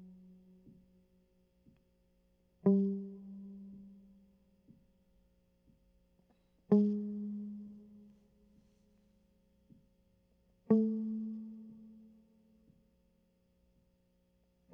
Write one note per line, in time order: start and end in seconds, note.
2.67 4.84 G3
6.72 7.06 G#3
10.71 12.88 A3